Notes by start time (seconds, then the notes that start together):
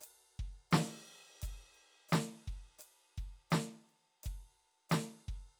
0.01 hi-hat pedal, ride
0.38 kick, ride
0.71 snare, hi-hat pedal, crash
1.42 kick, hi-hat pedal, ride
1.75 ride
2.09 snare, hi-hat pedal
2.13 ride
2.48 kick, ride
2.79 hi-hat pedal, ride
3.18 kick, ride
3.51 snare, hi-hat pedal, ride
3.89 ride
4.23 kick, hi-hat pedal, ride
4.55 ride
4.90 snare, hi-hat pedal, ride
5.28 kick, ride